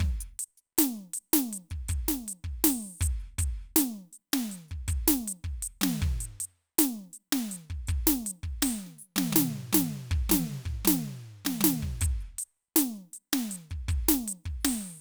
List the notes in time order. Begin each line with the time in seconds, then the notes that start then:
0.01 kick
0.21 closed hi-hat
0.40 closed hi-hat
0.58 closed hi-hat
0.79 closed hi-hat, snare
0.97 closed hi-hat
1.14 closed hi-hat
1.34 snare
1.53 closed hi-hat
1.71 kick, closed hi-hat
1.89 closed hi-hat, kick
2.09 snare
2.29 closed hi-hat
2.45 kick
2.65 open hi-hat, snare
3.01 closed hi-hat, kick, hi-hat pedal
3.20 closed hi-hat
3.39 closed hi-hat, kick
3.77 closed hi-hat, snare
4.13 closed hi-hat
4.33 snare, closed hi-hat
4.52 closed hi-hat
4.69 kick, closed hi-hat
4.89 closed hi-hat, kick
5.08 snare
5.28 closed hi-hat
5.45 kick, closed hi-hat
5.63 closed hi-hat
5.82 snare, high tom
6.03 kick
6.21 closed hi-hat
6.41 closed hi-hat
6.79 closed hi-hat, snare
6.98 closed hi-hat
7.05 snare
7.14 closed hi-hat
7.33 snare, closed hi-hat
7.52 closed hi-hat
7.69 kick, closed hi-hat
7.88 closed hi-hat, kick
8.08 snare
8.27 closed hi-hat
8.44 kick, closed hi-hat
8.63 open hi-hat, snare
8.87 snare
8.99 hi-hat pedal
9.17 snare, high tom
9.33 snare, hi-hat pedal, high tom
9.73 snare, hi-hat pedal, high tom
10.12 kick
10.30 snare, high tom
10.34 high tom
10.66 kick
10.85 snare, high tom
11.46 snare, high tom
11.61 snare, high tom
11.83 kick
12.02 closed hi-hat, kick
12.21 closed hi-hat
12.39 closed hi-hat
12.77 closed hi-hat, snare
12.96 closed hi-hat
13.14 closed hi-hat
13.33 snare, closed hi-hat
13.52 closed hi-hat
13.71 kick, closed hi-hat
13.89 closed hi-hat, kick
14.09 snare
14.28 closed hi-hat
14.45 kick, closed hi-hat
14.61 hi-hat pedal
14.65 open hi-hat, snare